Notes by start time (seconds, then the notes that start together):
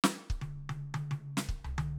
0.04 snare
0.30 kick
0.41 high tom
0.69 high tom
0.94 high tom
1.11 high tom
1.37 snare
1.49 kick
1.64 floor tom
1.78 high tom